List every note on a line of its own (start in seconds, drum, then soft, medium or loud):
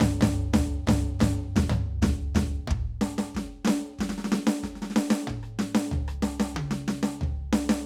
0.05 kick soft
0.05 snare loud
0.05 floor tom loud
0.21 snare loud
0.21 floor tom loud
0.25 kick soft
0.53 kick medium
0.53 snare loud
0.53 floor tom loud
0.87 kick soft
0.87 snare loud
0.87 floor tom loud
1.19 kick medium
1.19 snare loud
1.19 floor tom loud
1.56 kick medium
1.56 snare loud
1.56 floor tom loud
1.69 cross-stick medium
1.69 floor tom loud
2.02 kick medium
2.02 snare loud
2.02 floor tom loud
2.34 kick medium
2.34 snare loud
2.34 floor tom loud
2.66 kick soft
2.66 mid tom loud
2.71 kick loud
3.01 snare loud
3.18 snare medium
3.35 kick medium
3.35 snare medium
3.65 snare loud
3.67 snare loud
3.98 kick medium
3.98 snare loud
4.05 hi-hat pedal soft
4.09 snare medium
4.18 snare medium
4.24 snare medium
4.32 snare loud
4.47 snare loud
4.63 kick soft
4.63 snare medium
4.75 snare soft
4.82 snare medium
4.90 snare medium
4.96 snare loud
5.10 snare loud
5.27 kick medium
5.27 mid tom loud
5.43 cross-stick medium
5.59 snare loud
5.75 snare loud
5.91 kick medium
5.91 floor tom loud
6.08 cross-stick medium
6.22 snare loud
6.40 snare loud
6.54 kick soft
6.54 high tom loud
6.71 snare loud
6.88 snare loud
7.03 snare loud
7.21 kick soft
7.21 floor tom loud
7.53 snare loud
7.53 hi-hat pedal soft
7.69 snare loud